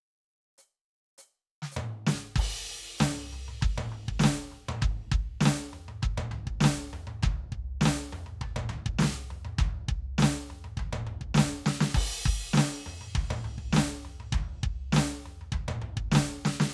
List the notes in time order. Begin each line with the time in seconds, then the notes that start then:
0.58 hi-hat pedal
1.18 hi-hat pedal
1.62 snare
1.72 hi-hat pedal
1.76 high tom
2.07 snare
2.13 kick
2.36 kick, crash, ride
2.98 snare, floor tom, hi-hat pedal
3.32 floor tom
3.48 high tom
3.61 kick, floor tom
3.78 high tom
3.92 floor tom
4.08 kick
4.19 snare
4.24 snare
4.52 floor tom
4.69 high tom
4.82 kick, floor tom
5.12 kick
5.41 snare
5.45 snare, hi-hat pedal
5.73 mid tom
5.88 high tom
6.02 kick, floor tom
6.17 high tom
6.31 floor tom
6.47 kick
6.61 snare
6.64 snare
6.93 mid tom
7.07 high tom
7.23 kick, floor tom
7.52 kick
7.81 snare
7.85 snare
8.12 mid tom
8.26 high tom
8.41 kick, floor tom
8.56 high tom
8.69 floor tom
8.86 kick
8.99 snare
9.02 snare
9.30 mid tom
9.45 high tom
9.59 kick, floor tom
9.88 kick
10.18 snare
10.22 snare
10.50 mid tom
10.64 high tom
10.77 kick, floor tom
10.93 high tom
11.07 mid tom
11.21 kick
11.34 snare
11.38 snare
11.66 snare
11.80 snare
11.94 kick, crash
12.26 kick
12.37 kick
12.53 snare
12.57 snare
12.86 mid tom
13.01 high tom
13.15 kick, floor tom
13.30 high tom
13.44 floor tom
13.58 kick
13.73 snare
13.76 snare
14.05 mid tom
14.20 high tom
14.32 kick, floor tom
14.63 kick
14.92 snare
14.96 snare
15.26 mid tom
15.41 high tom
15.52 kick, floor tom
15.68 high tom
15.82 mid tom
15.97 kick
16.12 snare
16.15 snare
16.45 snare
16.60 snare